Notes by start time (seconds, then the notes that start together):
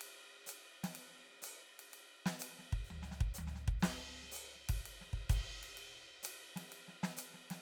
0.01 ride
0.46 hi-hat pedal, ride
0.84 snare, ride
0.94 hi-hat pedal, ride
1.42 hi-hat pedal, ride
1.79 ride
1.90 hi-hat pedal, ride
2.26 snare
2.39 hi-hat pedal, ride
2.59 snare
2.73 kick
2.84 hi-hat pedal
2.90 floor tom
3.02 snare
3.11 snare
3.21 kick
3.34 hi-hat pedal
3.38 floor tom
3.47 snare
3.55 snare
3.68 kick
3.80 snare, hi-hat pedal
3.84 ride
4.23 snare
4.32 hi-hat pedal
4.37 ride
4.55 snare
4.69 kick, ride
4.77 hi-hat pedal
4.86 ride
5.01 snare
5.13 kick
5.29 kick, hi-hat pedal, ride
5.63 ride
5.75 hi-hat pedal, ride
6.23 hi-hat pedal, ride
6.56 snare, ride
6.67 hi-hat pedal
6.72 ride
6.88 snare
7.03 snare
7.17 hi-hat pedal, ride
7.34 snare
7.50 snare, ride